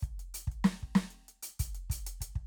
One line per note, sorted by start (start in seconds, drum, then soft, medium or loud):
0.01 kick medium
0.01 closed hi-hat soft
0.01 hi-hat pedal soft
0.20 closed hi-hat medium
0.35 closed hi-hat loud
0.48 kick soft
0.52 closed hi-hat soft
0.65 snare loud
0.81 kick soft
0.81 closed hi-hat soft
0.96 snare loud
1.11 closed hi-hat medium
1.29 closed hi-hat medium
1.43 closed hi-hat loud
1.60 closed hi-hat loud
1.60 kick medium
1.75 closed hi-hat medium
1.90 closed hi-hat loud
1.90 kick medium
2.07 closed hi-hat loud
2.21 kick soft
2.21 closed hi-hat loud
2.36 kick soft